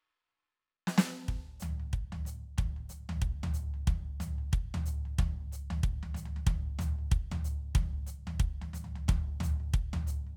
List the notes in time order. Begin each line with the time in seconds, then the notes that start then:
0.87 snare
0.98 snare
1.28 kick, floor tom
1.60 floor tom, hi-hat pedal
1.80 floor tom
1.93 kick, floor tom
2.12 floor tom
2.25 floor tom, hi-hat pedal
2.58 kick, floor tom
2.76 floor tom
2.89 floor tom, hi-hat pedal
3.09 floor tom
3.22 kick
3.43 floor tom
3.54 hi-hat pedal
3.74 floor tom
3.87 kick, floor tom
4.20 floor tom, hi-hat pedal
4.38 floor tom
4.52 kick, floor tom
4.74 floor tom
4.86 floor tom, hi-hat pedal
5.05 floor tom
5.19 kick, floor tom
5.40 floor tom
5.52 floor tom, hi-hat pedal
5.70 floor tom
5.83 kick, floor tom
6.03 floor tom
6.15 floor tom, hi-hat pedal
6.26 floor tom
6.36 floor tom
6.47 kick, floor tom
6.79 floor tom, hi-hat pedal
6.99 floor tom
7.11 kick, floor tom
7.32 floor tom
7.44 floor tom, hi-hat pedal
7.75 kick, floor tom
7.94 floor tom
7.98 floor tom
8.07 floor tom, hi-hat pedal
8.27 floor tom
8.40 kick, floor tom
8.62 floor tom
8.73 floor tom, hi-hat pedal
8.84 floor tom
8.96 floor tom
9.08 kick, floor tom
9.27 floor tom
9.40 floor tom, hi-hat pedal
9.60 floor tom
9.74 kick
9.93 floor tom
10.07 floor tom, hi-hat pedal
10.27 floor tom